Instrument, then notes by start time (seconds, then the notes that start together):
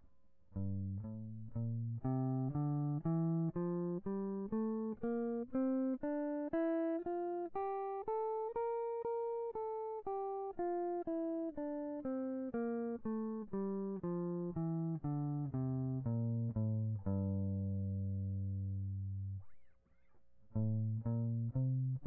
electric guitar
0.58 G2
1.07 A2
1.58 A#2
2.06 C3
2.56 D3
3.06 E3
3.57 F3
4.07 G3
4.53 A3
5.04 A#3
5.55 C4
6.04 D4
6.53 E4
7.06 F4
7.56 G4
8.08 A4
8.50 A#4
8.56 A#4
9.05 A#4
9.55 A4
10.07 G4
10.59 F4
11.07 E4
11.58 D4
12.05 C4
12.54 A#3
13.06 A3
13.54 G3
14.04 F3
14.57 E3
15.05 D3
15.55 C3
16.07 A#2
16.58 A2
17.08 G2
20.57 A2
21.07 A#2
21.57 C3